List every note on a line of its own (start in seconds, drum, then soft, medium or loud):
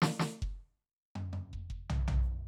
0.02 snare loud
0.20 snare loud
0.42 kick medium
1.15 mid tom loud
1.33 mid tom medium
1.53 kick soft
1.70 kick soft
1.90 floor tom loud
2.08 floor tom loud
2.23 hi-hat pedal soft